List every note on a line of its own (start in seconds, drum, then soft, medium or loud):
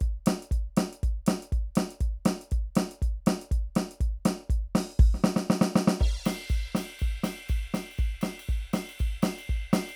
0.01 closed hi-hat medium
0.01 kick medium
0.26 closed hi-hat loud
0.26 snare loud
0.43 closed hi-hat medium
0.52 closed hi-hat medium
0.52 kick medium
0.77 closed hi-hat loud
0.77 snare loud
0.93 closed hi-hat medium
1.04 closed hi-hat medium
1.04 kick medium
1.27 closed hi-hat loud
1.27 snare loud
1.43 closed hi-hat medium
1.53 closed hi-hat soft
1.53 kick medium
1.76 closed hi-hat loud
1.76 snare loud
1.91 closed hi-hat medium
2.01 closed hi-hat medium
2.01 kick medium
2.26 closed hi-hat loud
2.26 snare loud
2.42 closed hi-hat medium
2.52 closed hi-hat medium
2.52 kick medium
2.76 closed hi-hat loud
2.76 snare loud
2.91 closed hi-hat medium
3.02 closed hi-hat medium
3.02 kick medium
3.27 closed hi-hat loud
3.27 snare loud
3.42 closed hi-hat medium
3.52 closed hi-hat medium
3.52 kick medium
3.76 closed hi-hat medium
3.76 snare loud
3.91 closed hi-hat medium
4.01 kick medium
4.26 closed hi-hat loud
4.26 snare loud
4.50 closed hi-hat medium
4.50 kick medium
4.76 open hi-hat loud
4.76 snare loud
4.99 open hi-hat medium
4.99 kick loud
5.15 snare soft
5.24 snare loud
5.37 snare loud
5.50 snare loud
5.62 snare loud
5.76 snare loud
5.88 snare loud
6.00 kick medium
6.00 hi-hat pedal medium
6.00 crash medium
6.26 snare loud
6.26 ride loud
6.50 kick medium
6.50 ride medium
6.75 snare medium
6.75 ride loud
6.99 kick medium
6.99 ride medium
7.24 snare medium
7.24 ride loud
7.48 kick medium
7.48 hi-hat pedal soft
7.48 ride medium
7.72 snare medium
7.72 hi-hat pedal soft
7.72 ride medium
7.92 ride soft
7.99 kick medium
7.99 ride soft
8.22 snare medium
8.22 ride medium
8.40 ride medium
8.49 kick medium
8.49 ride soft
8.74 snare medium
8.74 ride medium
8.89 ride medium
9.00 kick medium
9.00 ride medium
9.23 snare loud
9.23 ride medium
9.39 ride medium
9.50 kick medium
9.73 snare loud
9.73 ride loud
9.89 ride medium